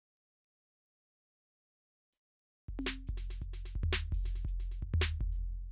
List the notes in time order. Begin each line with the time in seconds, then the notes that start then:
2.13 hi-hat pedal
2.68 kick
2.79 hi-hat pedal, high tom
2.86 snare
3.07 closed hi-hat, kick
3.17 snare
3.26 hi-hat pedal
3.30 snare
3.41 kick, closed hi-hat
3.53 snare
3.58 hi-hat pedal
3.65 snare
3.75 kick
3.83 floor tom
3.93 snare
4.12 open hi-hat, kick
4.24 snare, hi-hat pedal
4.35 snare
4.45 closed hi-hat, kick
4.60 snare, hi-hat pedal
4.71 snare
4.82 kick
4.94 floor tom
5.01 snare
5.21 kick
5.32 hi-hat pedal